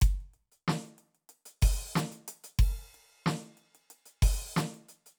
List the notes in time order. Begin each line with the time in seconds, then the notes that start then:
0.01 kick, closed hi-hat
0.20 closed hi-hat
0.34 closed hi-hat
0.52 closed hi-hat
0.68 snare
0.84 closed hi-hat
0.98 closed hi-hat
1.15 closed hi-hat
1.29 closed hi-hat
1.46 closed hi-hat
1.62 open hi-hat, kick
1.96 snare, hi-hat pedal
2.12 closed hi-hat
2.28 closed hi-hat
2.44 closed hi-hat
2.59 kick, crash
2.94 closed hi-hat
3.09 closed hi-hat
3.26 snare
3.43 closed hi-hat
3.57 closed hi-hat
3.75 closed hi-hat
3.90 closed hi-hat
4.06 closed hi-hat
4.22 open hi-hat, kick
4.56 snare, hi-hat pedal
4.74 closed hi-hat
4.89 closed hi-hat
5.06 closed hi-hat